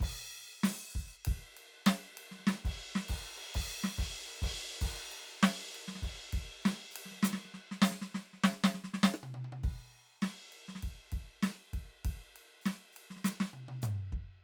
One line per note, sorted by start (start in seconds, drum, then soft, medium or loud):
0.01 kick medium
0.01 crash medium
0.64 open hi-hat loud
0.64 snare loud
0.96 kick medium
1.26 kick medium
1.26 ride loud
1.57 ride medium
1.87 snare loud
1.87 ride loud
2.18 ride loud
2.32 snare soft
2.40 snare soft
2.48 snare loud
2.65 kick medium
2.65 ride medium
2.96 snare loud
3.09 kick medium
3.09 crash medium
3.37 ride medium
3.55 kick medium
3.55 crash loud
3.84 snare loud
3.98 kick medium
3.98 ride loud
4.26 crash soft
4.42 kick medium
4.42 ride loud
4.82 kick medium
4.82 crash medium
4.88 closed hi-hat soft
5.12 ride medium
5.43 snare loud
5.43 ride loud
5.70 hi-hat pedal soft
5.75 ride medium
5.88 snare medium
5.96 snare soft
6.03 kick medium
6.03 ride medium
6.33 kick medium
6.33 ride medium
6.62 snare loud
6.62 hi-hat pedal soft
6.62 ride medium
6.92 hi-hat pedal soft
6.96 ride loud
7.06 snare soft
7.12 snare soft
7.17 snare soft
7.23 snare loud
7.23 hi-hat pedal loud
7.34 snare medium
7.45 snare soft
7.54 snare soft
7.72 snare medium
7.82 snare loud
7.82 hi-hat pedal medium
7.92 snare medium
8.02 snare medium
8.15 snare medium
8.34 snare soft
8.44 snare loud
8.53 snare soft
8.64 snare loud
8.75 snare medium
8.85 snare medium
8.94 snare medium
9.04 snare loud
9.14 cross-stick medium
9.24 high tom medium
9.35 high tom medium
9.45 high tom soft
9.53 high tom medium
9.64 kick medium
9.64 crash soft
10.22 snare loud
10.22 ride medium
10.53 ride medium
10.69 snare soft
10.76 snare medium
10.83 kick medium
10.83 ride medium
11.12 kick medium
11.12 ride medium
11.43 snare loud
11.43 ride medium
11.74 kick medium
11.74 ride medium
12.05 kick medium
12.05 ride loud
12.37 ride medium
12.62 hi-hat pedal soft
12.66 snare loud
12.66 ride medium
12.93 hi-hat pedal soft
12.97 ride medium
13.11 snare soft
13.17 snare soft
13.25 snare loud
13.25 hi-hat pedal loud
13.41 snare loud
13.54 high tom medium
13.69 high tom medium
13.83 hi-hat pedal medium
13.83 mid tom loud
14.13 kick medium